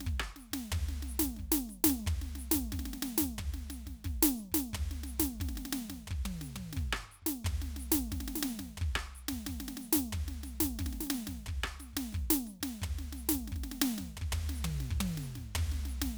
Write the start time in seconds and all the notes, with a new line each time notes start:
0.01 snare
0.07 kick
0.20 cross-stick
0.37 snare, hi-hat pedal
0.52 kick, snare
0.72 kick, floor tom
0.89 snare
1.03 snare
1.09 hi-hat pedal
1.20 kick, snare
1.37 kick, snare
1.52 snare
1.70 snare, hi-hat pedal
1.85 kick, snare
1.90 snare
2.07 kick, floor tom
2.22 snare
2.36 snare, hi-hat pedal
2.52 kick, snare
2.72 kick, snare
2.80 snare
2.86 snare
2.94 snare
3.03 snare, hi-hat pedal
3.18 kick, snare
3.39 kick, floor tom
3.54 snare
3.70 snare, hi-hat pedal
3.87 kick, snare
4.05 kick, snare
4.23 snare
4.37 snare, hi-hat pedal
4.52 kick, snare
4.74 kick, floor tom
4.91 snare
5.04 snare, hi-hat pedal
5.20 kick, snare
5.41 kick, snare
5.49 snare
5.56 snare
5.58 snare
5.66 snare
5.73 snare, hi-hat pedal
5.89 kick, snare
6.08 kick, floor tom
6.26 high tom
6.42 snare, hi-hat pedal
6.56 kick, high tom
6.73 kick, snare
6.93 cross-stick
7.12 hi-hat pedal
7.22 kick
7.27 snare
7.45 kick, floor tom
7.62 snare
7.77 snare, hi-hat pedal
7.92 kick, snare
8.12 kick, snare
8.21 snare
8.28 snare
8.36 snare
8.43 snare
8.47 hi-hat pedal
8.60 kick, snare
8.78 floor tom
8.82 kick
8.96 cross-stick
9.15 hi-hat pedal
9.29 kick, snare
9.47 kick, snare
9.61 snare
9.69 snare
9.77 snare
9.82 hi-hat pedal
9.93 kick, snare
10.13 kick, floor tom
10.28 snare
10.44 snare, hi-hat pedal
10.61 kick, snare
10.79 kick, snare
10.87 snare
10.93 snare
11.01 snare
11.07 snare
11.11 snare
11.15 hi-hat pedal
11.27 kick, snare
11.46 kick, floor tom
11.64 cross-stick
11.80 snare, hi-hat pedal
11.94 kick, snare
12.13 kick, snare
12.31 snare
12.47 snare, hi-hat pedal
12.61 kick, snare
12.82 kick, floor tom
12.99 snare
13.13 snare
13.17 hi-hat pedal
13.29 kick, snare
13.48 snare
13.52 kick, snare
13.64 snare
13.72 snare
13.89 hi-hat pedal
13.98 kick, snare
14.17 floor tom
14.22 kick
14.33 floor tom
14.50 snare
14.55 hi-hat pedal
14.65 kick, mid tom
14.81 snare
14.91 kick
15.01 high tom
15.18 snare
15.22 hi-hat pedal
15.36 kick, snare
15.55 kick, floor tom
15.72 snare
15.86 snare, hi-hat pedal
16.02 kick, snare